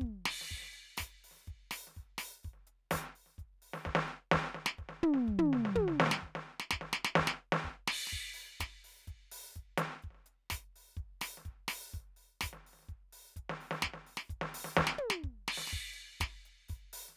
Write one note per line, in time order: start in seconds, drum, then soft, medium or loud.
0.00 kick soft
0.00 hi-hat pedal soft
0.07 kick soft
0.26 snare loud
0.26 crash medium
0.42 snare soft
0.49 open hi-hat soft
0.49 kick soft
0.49 snare soft
0.57 snare soft
0.61 snare soft
0.63 snare soft
0.73 open hi-hat soft
0.98 open hi-hat loud
0.98 kick soft
0.98 snare medium
1.25 open hi-hat soft
1.32 snare soft
1.37 snare soft
1.48 kick soft
1.48 closed hi-hat soft
1.72 open hi-hat medium
1.72 snare medium
1.88 snare soft
1.95 kick soft
1.95 open hi-hat soft
2.19 open hi-hat medium
2.19 snare medium
2.44 kick soft
2.44 open hi-hat soft
2.54 snare soft
2.68 open hi-hat soft
2.92 open hi-hat loud
2.92 kick soft
2.92 snare medium
3.16 open hi-hat soft
3.27 snare soft
3.39 closed hi-hat soft
3.39 kick soft
3.62 open hi-hat soft
3.74 snare soft
3.86 kick soft
3.86 snare medium
4.09 snare soft
4.32 kick soft
4.32 snare loud
4.32 hi-hat pedal soft
4.45 snare soft
4.55 snare soft
4.67 snare loud
4.78 kick soft
4.78 snare soft
4.78 hi-hat pedal soft
4.89 snare soft
5.03 floor tom loud
5.14 snare soft
5.27 kick soft
5.27 hi-hat pedal soft
5.39 floor tom loud
5.45 floor tom soft
5.54 snare soft
5.66 snare medium
5.76 kick soft
5.76 hi-hat pedal soft
5.76 mid tom loud
5.89 snare soft
6.00 snare loud
6.07 snare medium
6.12 snare loud
6.23 kick soft
6.27 snare soft
6.36 snare medium
6.60 snare medium
6.71 kick soft
6.71 snare loud
6.71 hi-hat pedal soft
6.82 snare soft
6.94 snare loud
7.05 snare loud
7.16 kick soft
7.16 snare loud
7.16 hi-hat pedal soft
7.28 snare loud
7.53 snare loud
7.65 kick soft
7.88 snare loud
7.88 crash loud
8.08 open hi-hat soft
8.08 snare soft
8.13 kick soft
8.34 open hi-hat medium
8.61 closed hi-hat loud
8.61 kick soft
8.61 snare medium
8.85 open hi-hat soft
9.08 closed hi-hat soft
9.08 kick soft
9.32 open hi-hat medium
9.56 closed hi-hat soft
9.56 kick soft
9.78 open hi-hat loud
9.78 snare medium
9.93 snare soft
10.03 closed hi-hat soft
10.03 kick soft
10.11 snare soft
10.15 snare soft
10.21 snare soft
10.27 open hi-hat soft
10.51 open hi-hat loud
10.51 kick soft
10.51 snare medium
10.76 open hi-hat soft
10.97 closed hi-hat soft
10.97 kick soft
11.22 open hi-hat medium
11.22 snare medium
11.38 snare soft
11.46 closed hi-hat soft
11.46 kick soft
11.69 open hi-hat medium
11.69 snare loud
11.93 open hi-hat soft
11.93 kick soft
11.93 snare soft
12.00 snare soft
12.17 open hi-hat soft
12.42 open hi-hat medium
12.42 kick soft
12.42 snare loud
12.54 snare soft
12.67 open hi-hat soft
12.74 snare soft
12.80 snare soft
12.83 snare soft
12.89 closed hi-hat soft
12.89 kick soft
13.13 open hi-hat medium
13.37 closed hi-hat medium
13.37 kick soft
13.50 snare medium
13.61 open hi-hat soft
13.72 snare medium
13.83 kick soft
13.83 snare loud
13.94 snare soft
14.07 open hi-hat soft
14.18 snare medium
14.28 kick soft
14.28 closed hi-hat soft
14.28 hi-hat pedal soft
14.42 snare medium
14.55 open hi-hat medium
14.65 snare soft
14.77 kick soft
14.77 snare loud
14.88 snare loud
14.99 high tom medium
15.11 snare loud
15.24 kick soft
15.48 snare loud
15.48 crash loud
15.58 snare soft
15.68 open hi-hat soft
15.68 snare soft
15.73 kick soft
15.94 open hi-hat soft
16.21 closed hi-hat medium
16.21 kick soft
16.21 snare loud
16.46 open hi-hat soft
16.69 open hi-hat soft
16.69 kick soft
16.94 open hi-hat medium
17.09 snare soft